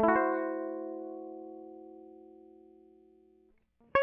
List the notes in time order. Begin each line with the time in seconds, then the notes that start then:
0.00 A3 E4
0.09 F#4
0.16 C5
3.81 A#3
3.95 C#5